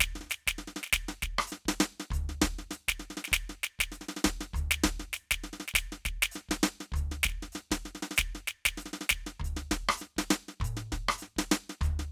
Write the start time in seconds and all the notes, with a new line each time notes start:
0.01 kick, snare
0.16 snare
0.21 snare
0.27 snare, hi-hat pedal
0.32 snare
0.47 kick, snare
0.59 snare
0.68 snare
0.77 snare
0.84 snare
0.87 snare
0.93 kick, snare, hi-hat pedal
1.09 snare
1.23 kick, snare
1.31 kick
1.39 cross-stick
1.48 hi-hat pedal
1.53 snare
1.66 kick, snare
1.81 snare
2.00 snare
2.11 kick, floor tom, hi-hat pedal
2.18 kick
2.21 kick
2.30 snare
2.42 kick, snare
2.59 snare
2.71 snare, hi-hat pedal
2.89 kick, snare
3.00 snare
3.11 snare
3.18 snare
3.25 snare
3.28 kick, snare
3.33 snare, hi-hat pedal
3.50 snare
3.64 snare
3.80 kick, snare
3.92 snare, hi-hat pedal
4.02 snare
4.09 snare
4.17 snare
4.25 kick, snare
4.41 snare
4.54 kick, floor tom, hi-hat pedal
4.60 kick
4.72 snare
4.84 kick, snare
4.92 kick
5.00 snare
5.14 snare, hi-hat pedal
5.32 kick, snare
5.44 snare
5.54 snare
5.60 snare
5.68 snare
5.74 kick, snare, hi-hat pedal
5.93 snare
6.06 kick, snare
6.15 kick
6.23 snare
6.32 hi-hat pedal
6.36 snare
6.49 kick, snare
6.64 snare
6.81 snare
6.93 kick, floor tom, hi-hat pedal
7.12 snare
7.24 kick, snare
7.29 kick, snare
7.35 kick
7.43 snare
7.53 snare, hi-hat pedal
7.71 kick, snare
7.86 snare
7.95 snare
8.03 snare
8.11 snare
8.17 kick, snare, hi-hat pedal
8.25 kick
8.35 snare
8.48 snare
8.66 kick, snare
8.78 snare, hi-hat pedal
8.86 snare
8.94 snare
9.02 snare
9.10 kick, snare
9.27 snare
9.40 kick, floor tom
9.45 kick, hi-hat pedal
9.51 kick
9.57 snare
9.72 kick, snare
9.80 kick
9.89 cross-stick
9.98 hi-hat pedal
10.02 snare
10.17 kick, snare
10.31 snare
10.49 snare
10.61 kick, mid tom
10.65 kick, hi-hat pedal
10.70 kick
10.77 snare
10.93 kick, snare
11.02 kick
11.09 cross-stick
11.19 hi-hat pedal
11.23 snare
11.37 kick, snare
11.52 snare
11.70 snare
11.82 kick, floor tom, hi-hat pedal
11.88 kick
11.91 kick
12.00 snare